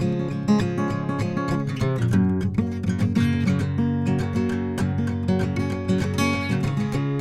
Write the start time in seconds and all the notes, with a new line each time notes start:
0.00 C#3 F3
0.04 G#3
0.21 C#4
0.31 F3 G#3
0.50 F3 G#3
0.61 F3 G#3
0.78 C#3 G#3 C#4
0.93 F3
1.11 C#4
1.21 C#3 F3 G#3 C#4
1.39 C#4
1.50 C#3 F3 G#3
1.62 C4
1.69 C#3 D#3
1.83 C3 D#3
1.98 A#2
2.03 F#2
2.14 F#2 A#2
2.43 F#2 C3
2.60 F#3 A#3
2.70 A#3
2.85 A#3
2.91 F#2
3.01 F#2 C#3 A#3
3.18 F#2 C#3 A#3
3.35 C#3
3.46 F#2 C#3 F#3
3.62 F#2 C#3 F#3
3.80 F#2 A#3
4.08 C#3 F#3
4.21 F#2 C#3 F#3
4.35 F#3 A#3
4.39 C#3
4.51 F#2 C#3
4.80 F#2 C#3 F#3
5.00 A#3
5.09 F#2 C#3
5.30 C#3 F#3
5.41 F#2 C#3 G3
5.58 A#3 C#4 F#4
5.71 F#2 D3
5.91 C#3 F#3
6.01 F#2 C#3 F#3 A#3
6.20 A#3 C#4
6.35 F#2 C#3 A#3
6.44 C#4
6.52 F#2 C#3 F#3 A#3
6.63 F2 C#3 G#3
6.79 C#3 G#3
6.95 C#3